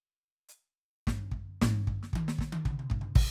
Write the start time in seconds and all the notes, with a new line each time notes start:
0.49 hi-hat pedal
1.07 kick, snare, floor tom
1.32 kick, floor tom
1.62 kick, snare, floor tom
1.88 kick, floor tom
2.03 snare
2.14 kick, high tom
2.28 snare
2.39 kick, snare
2.53 high tom
2.66 kick, mid tom
2.80 mid tom
2.90 kick, floor tom
3.02 mid tom
3.16 kick, crash